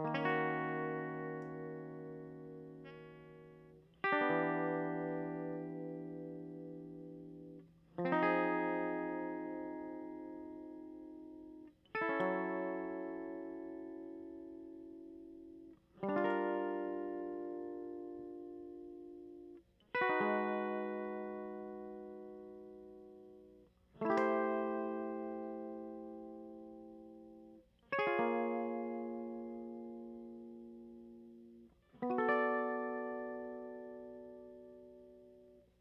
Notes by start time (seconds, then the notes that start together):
0.00 D#3
0.06 A#3
0.15 C#4
0.26 F#4
4.05 G4
4.13 D4
4.22 B3
4.31 E3
8.00 F3
8.06 C4
8.13 D#4
8.24 G#4
11.96 A4
12.02 E4
12.10 C#4
12.21 F#3
16.04 G3
16.10 D4
16.17 F4
16.25 A#4
19.96 B4
20.02 F#4
20.10 D#4
20.22 G#3
24.03 A3 E4
24.11 G4
24.18 C5
27.93 C#5
27.99 G#4
28.08 F4
28.20 A#3
32.04 B3
32.11 F#4
32.19 A4
32.29 D5